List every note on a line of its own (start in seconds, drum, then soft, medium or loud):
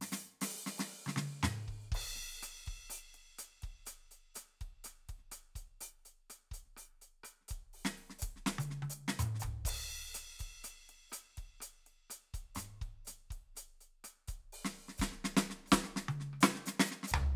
0.01 open hi-hat medium
0.01 snare medium
0.12 open hi-hat medium
0.12 snare medium
0.41 open hi-hat medium
0.41 snare medium
0.66 open hi-hat medium
0.66 snare medium
0.77 open hi-hat medium
0.77 snare medium
1.06 snare medium
1.06 high tom medium
1.16 snare medium
1.16 high tom medium
1.43 snare medium
1.43 mid tom loud
1.68 kick soft
1.92 kick medium
1.92 crash medium
2.04 kick soft
2.16 snare soft
2.42 closed hi-hat medium
2.42 cross-stick soft
2.42 snare soft
2.67 kick soft
2.67 closed hi-hat soft
2.90 open hi-hat medium
2.90 cross-stick soft
2.90 hi-hat pedal soft
3.14 closed hi-hat soft
3.39 closed hi-hat medium
3.39 cross-stick soft
3.62 kick soft
3.62 closed hi-hat soft
3.86 closed hi-hat medium
3.86 cross-stick soft
3.86 hi-hat pedal soft
4.11 closed hi-hat soft
4.34 closed hi-hat medium
4.34 cross-stick soft
4.34 snare soft
4.34 hi-hat pedal soft
4.61 kick soft
4.61 closed hi-hat soft
4.84 closed hi-hat medium
4.84 cross-stick soft
5.09 kick soft
5.09 closed hi-hat soft
5.18 snare soft
5.32 closed hi-hat medium
5.32 cross-stick soft
5.55 closed hi-hat soft
5.55 kick soft
5.81 open hi-hat medium
5.81 cross-stick soft
6.05 closed hi-hat soft
6.29 closed hi-hat medium
6.29 cross-stick soft
6.29 snare soft
6.51 closed hi-hat soft
6.51 kick soft
6.65 snare soft
6.76 open hi-hat medium
6.76 cross-stick soft
6.76 snare soft
7.02 closed hi-hat soft
7.23 closed hi-hat medium
7.23 cross-stick soft
7.41 snare soft
7.48 closed hi-hat medium
7.48 kick soft
7.73 open hi-hat soft
7.85 snare medium
7.97 open hi-hat soft
8.10 snare soft
8.19 kick soft
8.19 closed hi-hat medium
8.19 hi-hat pedal medium
8.36 snare soft
8.46 snare loud
8.58 hi-hat pedal medium
8.58 high tom loud
8.70 snare soft
8.82 high tom medium
8.90 hi-hat pedal medium
9.08 snare medium
9.19 hi-hat pedal medium
9.19 mid tom loud
9.35 snare soft
9.40 kick soft
9.40 hi-hat pedal medium
9.40 floor tom medium
9.65 kick soft
9.65 hi-hat pedal loud
9.65 crash medium
9.71 kick soft
9.74 kick soft
10.14 closed hi-hat medium
10.14 cross-stick soft
10.39 closed hi-hat soft
10.39 kick soft
10.62 closed hi-hat medium
10.62 cross-stick soft
10.62 hi-hat pedal soft
10.89 closed hi-hat soft
11.09 closed hi-hat medium
11.09 cross-stick soft
11.09 hi-hat pedal soft
11.37 kick soft
11.37 closed hi-hat soft
11.60 closed hi-hat medium
11.60 cross-stick soft
11.60 snare soft
11.86 closed hi-hat soft
12.10 closed hi-hat medium
12.10 cross-stick soft
12.34 open hi-hat soft
12.34 kick soft
12.43 snare soft
12.55 closed hi-hat medium
12.55 snare soft
12.55 hi-hat pedal medium
12.55 mid tom soft
12.81 kick soft
12.81 snare soft
12.81 closed hi-hat soft
13.05 closed hi-hat medium
13.05 snare soft
13.05 hi-hat pedal soft
13.30 kick soft
13.30 closed hi-hat soft
13.55 closed hi-hat medium
13.55 snare soft
13.55 hi-hat pedal soft
13.81 closed hi-hat soft
14.04 closed hi-hat medium
14.04 cross-stick soft
14.04 snare soft
14.28 closed hi-hat medium
14.28 kick soft
14.53 open hi-hat medium
14.65 snare medium
14.88 snare soft
14.98 kick soft
14.98 snare medium
14.98 hi-hat pedal medium
15.05 kick soft
15.08 kick soft
15.08 snare soft
15.24 snare medium
15.37 snare loud
15.50 snare soft
15.65 snare soft
15.65 hi-hat pedal soft
15.72 kick soft
15.72 snare loud
15.84 snare soft
15.96 snare medium
16.08 hi-hat pedal soft
16.08 high tom loud
16.20 snare soft
16.33 cross-stick soft
16.41 snare loud
16.41 hi-hat pedal medium
16.55 snare soft
16.66 snare medium
16.66 hi-hat pedal medium
16.80 snare loud
16.85 hi-hat pedal medium
16.91 snare soft
17.03 snare medium
17.07 hi-hat pedal loud
17.11 kick soft
17.11 floor tom loud